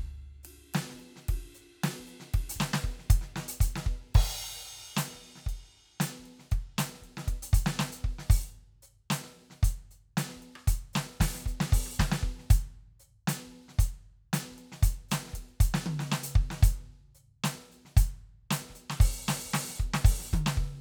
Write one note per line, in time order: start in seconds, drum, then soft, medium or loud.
0.43 hi-hat pedal soft
0.43 ride medium
0.74 snare loud
0.74 ride medium
0.90 snare soft
0.94 kick soft
0.98 hi-hat pedal soft
0.98 ride soft
1.16 snare soft
1.29 kick medium
1.29 ride medium
1.55 hi-hat pedal medium
1.84 snare loud
1.84 ride loud
2.00 kick soft
2.07 hi-hat pedal soft
2.20 snare medium
2.34 kick medium
2.34 ride medium
2.50 closed hi-hat loud
2.56 kick soft
2.56 hi-hat pedal medium
2.60 snare loud
2.73 snare loud
2.84 kick medium
2.99 snare soft
3.10 kick loud
3.10 closed hi-hat loud
3.21 snare soft
3.36 snare loud
3.48 closed hi-hat loud
3.61 closed hi-hat loud
3.61 kick loud
3.76 snare loud
3.86 kick medium
4.15 kick loud
4.15 crash loud
4.97 closed hi-hat loud
4.97 snare loud
5.12 kick soft
5.12 snare soft
5.36 snare soft
5.46 kick medium
5.46 closed hi-hat medium
6.00 closed hi-hat loud
6.00 snare loud
6.14 snare soft
6.19 kick soft
6.26 closed hi-hat soft
6.39 snare soft
6.52 kick medium
6.52 closed hi-hat medium
6.78 closed hi-hat loud
6.78 snare loud
6.94 snare soft
7.02 kick soft
7.02 closed hi-hat soft
7.17 snare medium
7.22 snare soft
7.28 kick medium
7.28 closed hi-hat medium
7.42 closed hi-hat loud
7.53 closed hi-hat loud
7.53 kick loud
7.66 snare loud
7.79 snare loud
7.92 closed hi-hat medium
8.04 kick medium
8.19 snare medium
8.30 open hi-hat loud
8.30 kick loud
8.82 hi-hat pedal medium
9.10 closed hi-hat loud
9.10 snare loud
9.23 snare soft
9.50 snare soft
9.63 closed hi-hat loud
9.63 kick loud
9.91 closed hi-hat soft
10.17 closed hi-hat loud
10.17 snare loud
10.29 snare soft
10.31 snare soft
10.34 kick soft
10.34 snare soft
10.42 closed hi-hat soft
10.56 cross-stick medium
10.67 closed hi-hat loud
10.67 kick loud
10.93 kick soft
10.93 snare loud
10.93 hi-hat pedal medium
11.20 open hi-hat loud
11.20 kick medium
11.20 snare loud
11.34 snare medium
11.39 snare soft
11.39 hi-hat pedal soft
11.45 closed hi-hat medium
11.45 kick medium
11.45 snare soft
11.60 snare loud
11.72 open hi-hat loud
11.72 kick loud
11.86 cross-stick soft
11.96 kick medium
11.96 snare loud
11.96 hi-hat pedal soft
12.12 snare loud
12.23 kick medium
12.39 snare soft
12.50 closed hi-hat loud
12.50 kick loud
13.00 hi-hat pedal medium
13.27 closed hi-hat loud
13.27 snare loud
13.47 kick soft
13.68 snare soft
13.79 closed hi-hat loud
13.79 kick loud
14.33 closed hi-hat loud
14.33 snare loud
14.51 kick soft
14.51 snare soft
14.58 closed hi-hat soft
14.72 snare medium
14.83 closed hi-hat loud
14.83 kick loud
15.09 closed hi-hat loud
15.09 snare loud
15.09 hi-hat pedal soft
15.25 snare soft
15.28 snare soft
15.33 kick soft
15.33 closed hi-hat medium
15.49 closed hi-hat soft
15.60 closed hi-hat loud
15.60 kick loud
15.74 snare loud
15.86 high tom loud
15.99 snare medium
16.12 snare loud
16.23 closed hi-hat loud
16.35 kick loud
16.50 snare medium
16.63 closed hi-hat loud
16.63 kick loud
17.15 hi-hat pedal soft
17.44 closed hi-hat loud
17.44 snare loud
17.72 closed hi-hat soft
17.85 snare soft
17.97 closed hi-hat loud
17.97 kick loud
18.51 closed hi-hat loud
18.51 snare loud
18.69 kick soft
18.69 snare soft
18.75 closed hi-hat medium
18.90 snare medium
19.00 open hi-hat loud
19.00 kick loud
19.28 open hi-hat loud
19.28 snare loud
19.46 kick soft
19.54 open hi-hat loud
19.54 snare loud
19.68 snare soft
19.72 snare soft
19.72 hi-hat pedal soft
19.78 closed hi-hat soft
19.78 kick medium
19.78 snare soft
19.94 snare loud
20.05 open hi-hat loud
20.05 kick loud
20.19 snare soft
20.26 snare soft
20.30 kick medium
20.30 snare soft
20.34 hi-hat pedal medium
20.34 high tom loud
20.46 snare loud
20.57 kick medium